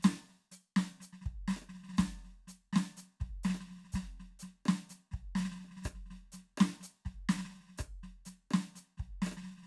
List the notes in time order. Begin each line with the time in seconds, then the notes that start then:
0.01 snare, hi-hat pedal
0.05 snare
0.09 snare
0.20 snare
0.23 snare
0.26 snare
0.29 snare
0.52 snare, hi-hat pedal
0.77 snare
0.78 snare
0.83 snare
1.01 snare, hi-hat pedal
1.13 snare
1.22 snare
1.26 kick
1.48 snare, hi-hat pedal
1.50 snare
1.53 cross-stick, snare
1.62 cross-stick
1.69 snare
1.75 snare
1.80 snare
1.84 snare
1.89 snare
1.94 snare
1.98 kick, snare, hi-hat pedal
2.05 kick
2.08 kick, snare
2.18 snare
2.23 snare
2.25 snare
2.33 snare
2.48 snare, hi-hat pedal
2.73 snare
2.76 snare
2.97 snare, hi-hat pedal
3.03 snare
3.08 snare
3.12 snare
3.20 kick, snare
3.30 kick
3.44 snare, hi-hat pedal
3.48 snare
3.50 snare
3.55 cross-stick
3.61 snare
3.66 snare
3.67 snare
3.71 snare
3.76 snare
3.79 snare
3.85 snare
3.89 snare, hi-hat pedal
3.94 kick, snare
4.02 kick
4.07 snare
4.14 snare
4.20 snare
4.31 snare
4.40 snare, hi-hat pedal
4.66 cross-stick, snare
4.81 snare
4.90 hi-hat pedal
4.99 snare
5.05 snare
5.12 kick, snare
5.19 kick
5.36 snare, hi-hat pedal
5.38 snare
5.41 snare
5.45 snare
5.52 snare
5.56 snare
5.61 snare
5.65 cross-stick, snare
5.71 snare
5.77 snare
5.82 kick, cross-stick, snare, hi-hat pedal
5.95 snare
6.06 snare
6.11 snare
6.17 snare
6.22 snare
6.26 snare
6.29 snare, hi-hat pedal
6.34 snare
6.58 cross-stick, snare
6.81 snare, hi-hat pedal
6.90 snare
6.97 snare
7.06 kick, snare
7.29 snare, hi-hat pedal
7.32 snare
7.34 snare
7.39 snare
7.45 snare
7.50 snare
7.55 snare
7.61 snare
7.64 snare
7.67 snare
7.69 snare
7.77 kick, cross-stick, snare, hi-hat pedal
8.04 snare
8.26 snare, hi-hat pedal
8.51 cross-stick, snare
8.76 snare, hi-hat pedal
8.79 snare
8.85 snare
8.91 snare
8.95 snare
8.98 kick, snare
9.05 kick
9.22 snare, hi-hat pedal
9.25 cross-stick, snare
9.32 cross-stick
9.37 snare
9.42 snare
9.44 snare
9.47 snare
9.51 snare
9.57 snare
9.58 snare
9.63 snare